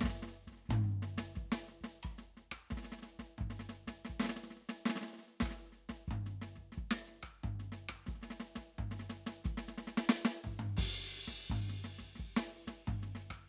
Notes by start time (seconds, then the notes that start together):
0.01 kick, snare
0.05 snare
0.09 snare
0.15 snare
0.23 snare
0.28 snare
0.34 hi-hat pedal
0.47 kick, snare
0.53 snare
0.57 snare
0.62 snare
0.66 kick, snare
0.69 snare, floor tom
0.84 snare
0.88 snare
0.91 snare
1.02 snare, hi-hat pedal
1.17 kick, snare
1.35 kick, snare
1.52 snare
1.66 snare, hi-hat pedal
1.81 kick, snare
2.03 kick, floor tom
2.18 snare
2.37 snare, hi-hat pedal
2.52 kick, cross-stick
2.71 kick, snare
2.77 snare
2.83 snare
2.85 snare
2.92 snare
2.99 snare
3.03 snare
3.07 hi-hat pedal
3.19 kick, snare
3.38 kick, floor tom
3.50 snare
3.60 snare
3.69 snare, hi-hat pedal
3.87 kick, snare
4.05 snare
4.10 kick
4.20 snare
4.23 snare
4.25 snare
4.29 snare
4.36 snare
4.44 snare
4.51 snare
4.57 snare
4.62 snare
4.69 snare
4.86 snare
4.90 snare
4.96 snare
5.01 snare
5.08 snare
5.13 snare
5.19 snare
5.23 snare
5.28 snare
5.32 snare
5.36 snare
5.40 kick, snare
5.46 cross-stick
5.51 snare
5.55 snare
5.58 snare
5.66 snare
5.72 snare
5.81 snare
5.89 kick, snare
6.08 kick, floor tom
6.26 snare
6.41 snare, hi-hat pedal
6.56 kick, snare
6.72 snare
6.78 kick
6.91 snare
7.06 snare, hi-hat pedal
7.23 kick, cross-stick
7.44 kick, floor tom
7.60 snare
7.72 snare, hi-hat pedal
7.89 kick, cross-stick
8.07 kick, snare
8.15 snare
8.22 snare
8.30 snare
8.40 snare, hi-hat pedal
8.56 kick, snare
8.79 kick, floor tom
8.91 snare
9.00 snare
9.10 snare, hi-hat pedal
9.27 snare
9.45 kick, snare, hi-hat pedal
9.55 kick, snare
9.68 snare
9.78 snare
9.87 snare
9.98 snare
10.09 snare, hi-hat pedal
10.25 snare
10.44 kick, floor tom
10.59 floor tom
10.77 kick, ride
11.13 snare
11.28 kick, snare
11.50 kick, floor tom
11.70 snare
11.84 snare, hi-hat pedal
11.99 kick, snare
12.16 snare
12.20 kick
12.37 snare
12.48 snare, hi-hat pedal
12.67 kick, snare
12.88 kick, floor tom
13.03 snare
13.15 snare
13.19 hi-hat pedal
13.31 kick, cross-stick